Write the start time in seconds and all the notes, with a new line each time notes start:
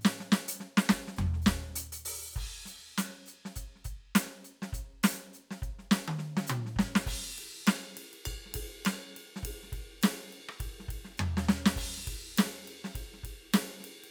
0.01 snare, hi-hat pedal
0.20 snare, hi-hat pedal
0.32 snare
0.48 closed hi-hat
0.60 snare
0.77 snare
0.89 kick, snare
1.07 snare
1.16 kick, floor tom, hi-hat pedal
1.24 kick
1.27 kick
1.34 snare
1.42 hi-hat pedal
1.46 kick, snare
1.76 closed hi-hat
1.92 open hi-hat
2.05 open hi-hat
2.10 kick
2.34 kick, hi-hat pedal, crash
2.42 kick
2.46 kick
2.65 closed hi-hat, snare
2.98 closed hi-hat, snare
3.09 snare
3.26 closed hi-hat, hi-hat pedal
3.45 snare
3.56 closed hi-hat, kick
3.75 snare
3.84 closed hi-hat, kick
4.15 closed hi-hat, snare
4.26 snare
4.44 closed hi-hat
4.62 snare
4.73 closed hi-hat, kick
4.79 kick
4.82 kick
4.93 kick
5.03 open hi-hat, snare
5.13 snare
5.33 hi-hat pedal, open hi-hat
5.51 snare
5.62 kick, closed hi-hat
5.68 kick
5.71 kick
5.79 snare
5.91 snare
5.96 snare
6.08 high tom
6.19 snare
6.37 snare
6.47 hi-hat pedal, mid tom
6.66 snare
6.76 kick, snare
6.84 kick
6.95 snare
7.06 kick, crash
7.13 kick
7.17 kick
7.28 snare
7.31 snare
7.37 snare, ride
7.67 snare, hi-hat pedal, ride bell
7.80 snare
7.97 ride
8.13 ride
8.25 kick, hi-hat pedal, ride bell
8.35 kick
8.46 snare
8.51 snare, ride
8.55 kick
8.61 kick
8.85 snare, hi-hat pedal, ride bell
9.16 ride
9.36 snare
9.42 kick, hi-hat pedal, ride
9.63 snare
9.68 snare
9.72 kick, ride
9.78 kick
9.81 kick
10.01 snare, hi-hat pedal, ride
10.13 snare
10.30 hi-hat pedal, ride
10.49 cross-stick
10.59 kick, hi-hat pedal, ride
10.66 kick
10.69 kick
10.80 snare
10.88 kick, ride
10.98 kick
11.05 snare
11.17 hi-hat pedal, floor tom
11.37 snare
11.49 snare
11.66 snare
11.76 kick, crash
11.82 kick
11.98 snare
12.07 kick, ride
12.13 kick
12.16 kick
12.36 snare, hi-hat pedal, ride
12.46 snare
12.68 ride
12.84 snare
12.95 kick, ride
13.13 snare
13.23 kick, ride
13.53 snare, hi-hat pedal, ride
13.62 snare
13.80 snare, hi-hat pedal
13.84 cross-stick, ride
13.91 snare
14.04 ride